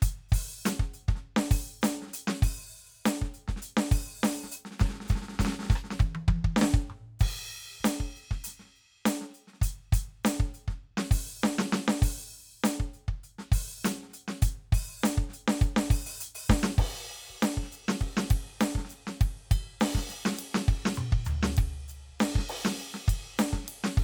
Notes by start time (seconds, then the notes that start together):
0.01 closed hi-hat, kick, snare
0.29 kick, hi-hat pedal
0.34 open hi-hat
0.65 closed hi-hat, snare, hi-hat pedal
0.80 kick, snare
0.94 closed hi-hat
1.08 kick, snare
1.16 snare
1.36 snare
1.51 open hi-hat, kick
1.81 closed hi-hat, snare, hi-hat pedal
2.02 snare
2.07 snare
2.11 closed hi-hat, snare
2.27 snare
2.42 open hi-hat, kick
2.74 open hi-hat
3.06 open hi-hat, snare, hi-hat pedal
3.22 kick, snare
3.34 closed hi-hat
3.48 kick, snare
3.56 snare
3.62 closed hi-hat
3.77 snare
3.92 open hi-hat, kick
4.23 open hi-hat, snare
4.44 kick, snare
4.51 open hi-hat, hi-hat pedal
4.65 snare
4.71 snare
4.74 snare
4.78 snare, hi-hat pedal
4.80 kick, snare
4.86 cross-stick, snare
4.93 snare
5.00 snare
5.04 snare
5.08 kick, snare, hi-hat pedal
5.10 snare
5.16 snare
5.19 snare
5.22 snare
5.29 snare
5.33 snare
5.36 snare
5.39 kick, snare, hi-hat pedal
5.45 snare
5.48 snare
5.52 snare
5.59 snare
5.63 snare
5.67 snare
5.70 kick, snare, hi-hat pedal
5.76 cross-stick
5.84 snare
5.91 snare
5.99 kick, hi-hat pedal, high tom
6.15 high tom
6.28 kick, high tom
6.45 kick
6.56 snare, hi-hat pedal
6.62 snare
6.74 kick
6.90 mid tom
7.18 kick, hi-hat pedal
7.21 kick, crash
7.81 kick
7.85 closed hi-hat, snare
8.00 kick
8.16 closed hi-hat
8.31 kick, snare
8.44 closed hi-hat, snare
8.60 snare
8.65 snare
8.76 closed hi-hat
9.06 closed hi-hat, snare
9.21 snare
9.30 snare
9.34 closed hi-hat
9.47 snare
9.54 snare
9.59 closed hi-hat, kick, snare
9.93 closed hi-hat, kick
10.24 closed hi-hat, snare, hi-hat pedal
10.40 kick
10.45 snare
10.54 closed hi-hat
10.68 kick, snare
10.84 closed hi-hat
10.97 snare
11.11 open hi-hat, kick
11.42 snare, hi-hat pedal
11.59 snare
11.73 snare
11.88 snare
12.02 open hi-hat, kick
12.52 kick
12.63 closed hi-hat, snare, hi-hat pedal
12.80 kick
12.94 closed hi-hat
13.08 kick, crash, ride
13.24 closed hi-hat
13.39 snare
13.52 open hi-hat, kick
13.84 closed hi-hat, snare, hi-hat pedal
14.03 snare
14.09 snare
14.11 closed hi-hat, snare
14.28 snare
14.42 open hi-hat, kick
14.72 open hi-hat, kick
15.02 closed hi-hat, snare, hi-hat pedal
15.18 kick
15.29 snare
15.34 closed hi-hat
15.48 snare
15.61 open hi-hat, kick
15.77 snare
15.90 open hi-hat, kick
16.06 open hi-hat
16.20 closed hi-hat, hi-hat pedal
16.35 open hi-hat
16.50 kick, snare
16.63 snare
16.78 kick, crash
17.30 kick
17.43 snare, hi-hat pedal, ride
17.57 kick
17.63 snare
17.72 hi-hat pedal, ride bell
17.88 snare
18.01 kick, crash
18.17 snare
18.30 kick, ride
18.60 snare, hi-hat pedal, ride
18.75 kick, snare
18.85 snare
18.89 snare, hi-hat pedal, ride
19.07 snare
19.19 kick, hi-hat pedal, ride
19.51 kick, hi-hat pedal, ride bell
19.80 snare, hi-hat pedal, crash
19.95 kick, snare
20.09 snare, hi-hat pedal, ride
20.25 snare
20.32 snare, hi-hat pedal
20.39 ride
20.55 snare
20.68 kick, ride
20.86 snare
20.94 hi-hat pedal, mid tom
21.12 kick
21.25 floor tom, hi-hat pedal
21.43 snare
21.57 kick, ride
21.88 hi-hat pedal, ride
22.09 kick
22.18 kick, snare, hi-hat pedal, ride
22.36 kick, snare
22.49 hi-hat pedal, crash
22.65 snare
22.80 ride
22.94 snare
23.08 kick, hi-hat pedal, ride bell
23.38 snare, hi-hat pedal, ride bell
23.53 kick, snare
23.58 snare
23.64 snare
23.68 ride
23.84 snare
23.95 kick, hi-hat pedal, ride